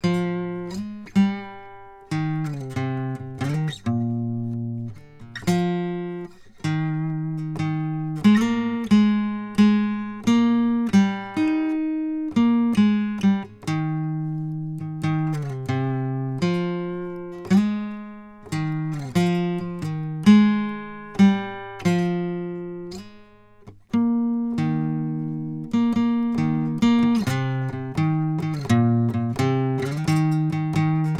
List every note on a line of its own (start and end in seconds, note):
0.04 0.71 F3
0.71 1.08 G#3
1.17 2.31 G3
2.12 2.76 D#3
2.78 3.16 C3
3.17 3.40 C3
3.42 3.77 D#3
3.87 4.93 A#2
5.48 6.30 F3
6.65 7.60 D#3
7.60 8.25 D#3
8.25 8.88 A#3
8.92 9.58 G#3
9.59 10.24 G#3
10.28 10.90 A#3
10.94 11.85 G3
11.38 12.34 D#4
12.37 12.77 A#3
12.79 13.22 G#3
13.25 13.44 G3
13.44 13.79 G#3
13.68 14.82 D#3
14.82 15.04 D#3
15.04 15.43 D#3
15.44 15.69 C3
15.70 16.44 C3
16.43 17.50 F3
17.52 18.54 G#3
18.53 19.16 D#3
19.16 19.60 F3
19.60 19.88 F3
19.83 20.27 D#3
20.27 21.19 G#3
21.20 21.85 G3
21.86 22.93 F3
22.93 23.67 G#3
23.94 25.74 A#3
24.59 25.72 D#3
25.75 25.96 A#3
25.98 26.81 A#3
26.39 26.83 D#3
26.83 27.24 A#3
27.28 27.72 C3
27.75 27.96 C3
27.98 28.44 D#3
28.44 28.68 D#3
28.71 29.13 A#2
29.15 29.38 A#2
29.40 29.79 C3
29.80 30.07 D3
30.09 30.53 D#3
30.54 30.76 D#3
30.77 31.20 D#3